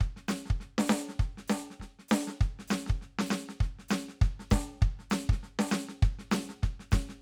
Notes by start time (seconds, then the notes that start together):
0.01 kick, snare
0.17 snare
0.29 snare, hi-hat pedal
0.46 snare
0.51 kick
0.61 snare
0.79 snare
0.88 snare, hi-hat pedal
1.09 snare
1.20 kick, snare
1.38 snare
1.48 snare, hi-hat pedal
1.71 snare
1.80 kick, snare
2.00 snare
2.09 snare, hi-hat pedal
2.28 snare
2.41 kick, snare
2.60 kick, snare
2.68 snare, hi-hat pedal
2.87 kick, snare
3.02 snare
3.19 snare
3.27 hi-hat pedal
3.31 snare
3.50 snare
3.61 kick, snare
3.79 snare
3.89 snare, hi-hat pedal
4.09 snare
4.22 kick, snare
4.40 snare
4.51 kick, snare, hi-hat pedal
4.82 kick, snare
5.00 snare
5.11 snare, hi-hat pedal
5.30 kick, snare
5.44 snare
5.60 snare
5.69 snare, hi-hat pedal
5.89 snare
6.03 kick, snare
6.19 snare
6.32 snare, hi-hat pedal
6.50 snare
6.63 kick, snare
6.80 snare
6.92 kick, snare, hi-hat pedal
7.10 snare